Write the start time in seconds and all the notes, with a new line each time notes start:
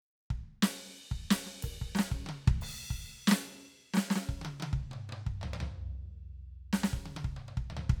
0.30 kick
0.62 snare, ride
1.11 kick
1.30 snare, ride
1.46 snare
1.63 kick, ride
1.81 kick
1.95 snare
1.99 snare
2.11 kick
2.26 high tom
2.29 high tom
2.47 kick
2.61 crash
2.90 kick
3.27 snare
3.31 snare
3.94 snare
3.97 snare
4.10 snare
4.16 snare
4.29 kick
4.41 high tom
4.45 high tom
4.60 high tom
4.62 high tom
4.73 kick
4.91 mid tom
4.93 mid tom
5.09 mid tom
5.12 mid tom
5.26 kick
5.41 floor tom
5.43 floor tom
5.53 floor tom
5.60 floor tom
6.73 snare
6.83 snare
6.93 kick
7.06 high tom
7.16 high tom
7.24 kick
7.36 mid tom
7.48 mid tom
7.57 kick
7.70 floor tom
7.77 floor tom
7.89 kick